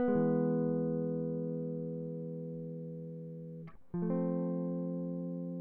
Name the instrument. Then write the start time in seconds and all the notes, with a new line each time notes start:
electric guitar
0.00 B3
0.08 G#3
0.16 E3
3.94 F3
4.03 A3
4.10 C4